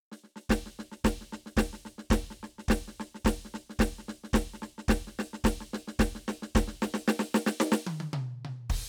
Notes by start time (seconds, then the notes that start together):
0.11 snare
0.24 snare
0.36 snare
0.49 kick, snare
0.66 snare
0.79 snare
0.92 snare
1.04 kick, snare
1.21 snare
1.32 snare
1.46 snare
1.57 kick, snare
1.73 snare
1.85 snare
1.98 snare
2.10 kick, snare
2.30 snare
2.43 snare
2.58 snare
2.68 kick, snare
2.88 snare
3.00 snare
3.14 snare
3.25 kick, snare
3.45 snare
3.54 snare
3.69 snare
3.79 kick, snare
3.98 snare
4.08 snare
4.24 snare
4.33 kick, snare
4.54 snare
4.62 snare
4.78 snare
4.88 kick, snare
5.07 snare
5.19 snare
5.33 snare
5.44 kick, snare
5.60 snare
5.73 snare
5.87 snare
5.99 kick, snare
6.15 snare
6.28 snare
6.42 snare
6.55 kick, snare
6.67 snare
6.82 snare
6.94 snare
7.08 snare
7.19 snare
7.34 snare
7.46 snare
7.60 snare
7.72 snare
7.87 high tom
8.00 high tom
8.13 mid tom
8.45 mid tom
8.70 kick, crash